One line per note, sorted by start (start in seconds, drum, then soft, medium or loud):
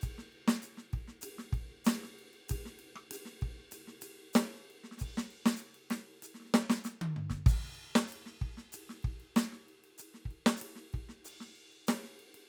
0.01 kick medium
0.01 hi-hat pedal medium
0.01 ride medium
0.18 snare soft
0.32 ride soft
0.48 snare loud
0.62 hi-hat pedal medium
0.62 ride medium
0.77 snare soft
0.93 kick medium
0.93 ride soft
1.08 snare soft
1.21 hi-hat pedal medium
1.21 ride medium
1.38 snare soft
1.53 kick medium
1.53 ride soft
1.85 snare loud
1.85 hi-hat pedal medium
1.85 ride loud
2.04 snare soft
2.19 ride soft
2.33 ride soft
2.48 kick medium
2.48 hi-hat pedal medium
2.48 ride loud
2.65 snare soft
2.79 ride soft
2.96 cross-stick medium
3.11 hi-hat pedal medium
3.11 ride loud
3.25 snare soft
3.41 kick medium
3.41 ride soft
3.59 snare soft
3.71 hi-hat pedal medium
3.71 ride medium
3.87 snare soft
4.01 hi-hat pedal medium
4.01 ride medium
4.33 snare loud
4.33 hi-hat pedal medium
4.33 ride loud
4.54 snare soft
4.70 ride soft
4.84 snare soft
4.91 snare soft
4.97 snare soft
4.97 hi-hat pedal medium
5.01 kick soft
5.01 ride medium
5.17 snare medium
5.31 ride soft
5.46 snare loud
5.56 hi-hat pedal medium
5.60 ride soft
5.74 ride soft
5.90 snare medium
5.90 ride medium
6.22 hi-hat pedal medium
6.22 ride medium
6.34 snare soft
6.40 snare soft
6.45 snare soft
6.49 snare soft
6.54 snare loud
6.70 snare loud
6.84 snare medium
6.84 hi-hat pedal medium
7.01 high tom loud
7.16 floor tom medium
7.30 kick soft
7.30 snare medium
7.46 kick loud
7.46 hi-hat pedal medium
7.46 crash medium
7.64 snare soft
7.75 ride soft
7.95 snare loud
8.08 hi-hat pedal medium
8.12 ride medium
8.26 snare soft
8.41 kick medium
8.41 ride soft
8.57 snare soft
8.72 hi-hat pedal medium
8.72 ride medium
8.89 snare soft
9.03 kick medium
9.03 ride soft
9.20 ride soft
9.36 snare loud
9.36 hi-hat pedal medium
9.36 ride medium
9.53 snare soft
9.68 ride soft
9.84 ride soft
9.98 hi-hat pedal medium
9.98 ride medium
10.14 snare soft
10.25 kick soft
10.31 ride soft
10.46 snare loud
10.57 hi-hat pedal medium
10.61 ride medium
10.76 snare soft
10.93 kick soft
10.93 ride soft
11.09 snare soft
11.25 hi-hat pedal medium
11.25 ride medium
11.40 snare soft
11.56 ride soft
11.72 ride soft
11.87 snare loud
11.87 hi-hat pedal medium
11.87 ride loud
12.04 snare soft
12.19 ride soft
12.34 ride soft